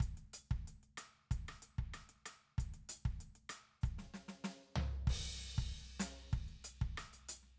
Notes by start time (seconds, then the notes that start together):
0.01 kick, closed hi-hat
0.18 closed hi-hat
0.34 closed hi-hat
0.51 kick
0.68 closed hi-hat
0.83 closed hi-hat
0.98 cross-stick, closed hi-hat
1.31 kick, closed hi-hat
1.49 cross-stick, closed hi-hat
1.63 closed hi-hat
1.79 kick
1.94 cross-stick, closed hi-hat
2.09 closed hi-hat
2.26 cross-stick, closed hi-hat
2.58 kick, closed hi-hat
2.74 closed hi-hat
2.89 closed hi-hat
3.06 kick
3.21 closed hi-hat
3.36 closed hi-hat
3.50 open hi-hat, cross-stick
3.81 kick, hi-hat pedal
3.86 closed hi-hat
3.99 snare
4.14 snare
4.29 snare
4.44 snare
4.76 floor tom
5.07 kick, ride
5.58 kick
5.71 closed hi-hat
5.84 closed hi-hat
6.00 open hi-hat, snare
6.06 snare
6.31 kick, closed hi-hat, hi-hat pedal
6.49 closed hi-hat
6.65 closed hi-hat
6.82 kick
6.98 cross-stick, closed hi-hat
7.13 closed hi-hat
7.29 closed hi-hat
7.43 snare